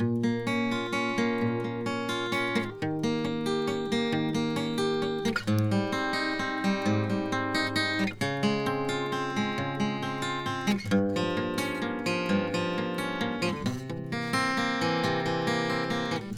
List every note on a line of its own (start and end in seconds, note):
0.01 1.42 A#2
0.01 0.20 A#3
0.25 1.15 A#3
0.48 0.90 C#4
0.73 2.06 F4
0.94 1.84 C#4
1.19 1.52 A#3
1.43 2.72 A#2
1.53 2.51 A#3
1.87 2.30 C#4
2.10 2.70 F4
2.33 2.70 C#4
2.65 2.82 D#3
2.71 3.44 G4
2.83 4.13 D#3
3.04 3.89 A#3
3.26 3.65 C#4
3.47 4.77 G4
3.69 4.53 C#4
3.93 4.33 A#3
4.13 5.37 D#3
4.36 5.22 A#3
4.57 4.98 C#4
4.79 5.36 G4
5.03 5.23 C#4
5.49 6.84 G#2
5.62 5.93 D#4
5.72 6.62 G3
5.93 6.36 C4
6.14 7.52 D#4
6.41 7.32 C4
6.65 7.08 G3
6.87 8.13 G#2
7.11 7.96 G3
7.33 7.77 C4
7.56 7.73 D#4
7.77 8.09 C4
7.77 8.09 D#4
8.22 9.57 C#3
8.44 9.34 G#3
8.67 9.10 C4
8.90 10.22 F4
9.13 10.01 C4
9.38 9.78 G#3
9.59 10.82 C#3
9.81 10.64 G#3
10.04 10.43 C4
10.23 10.81 F4
10.47 10.77 C4
10.87 10.95 G2
10.95 12.29 G2
11.17 12.03 F3
11.38 11.79 A#3
11.59 12.98 C#4
11.83 12.78 A#3
12.07 12.52 F3
12.30 13.83 G2
12.55 13.39 F3
12.79 13.18 A#3
12.99 13.67 C#4
13.22 13.53 A#3
13.67 15.02 C3
13.91 14.78 E3
14.13 14.56 A#3
14.34 15.69 C4
14.58 15.46 A#3
14.82 15.27 E3
15.05 16.23 C3
15.27 16.08 E3
15.48 15.87 A#3
15.71 16.21 C4
15.91 16.21 A#3